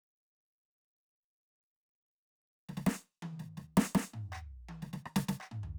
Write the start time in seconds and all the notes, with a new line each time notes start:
2.69 snare
2.77 snare
2.86 snare
3.22 high tom
3.39 snare
3.57 snare
3.77 snare
3.95 snare
4.13 mid tom
4.32 percussion
4.69 high tom
4.82 snare
4.93 snare
5.06 cross-stick
5.16 snare
5.28 snare
5.40 percussion
5.51 mid tom
5.63 floor tom